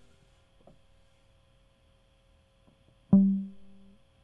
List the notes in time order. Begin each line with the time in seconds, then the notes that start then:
3.14 G3